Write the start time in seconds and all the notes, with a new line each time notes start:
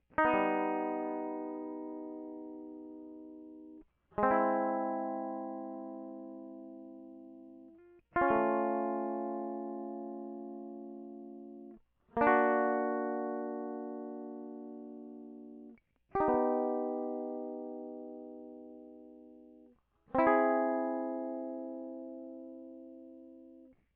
0.18 D#4
0.25 B3
0.34 G3
4.19 G#3
4.23 C4
4.31 E4
8.16 F4
8.21 C#4
8.31 A3
12.17 A#3
12.21 D4
12.27 F#4
16.15 G4
16.20 D#4
16.29 B3
20.15 C4 E4
20.27 G#4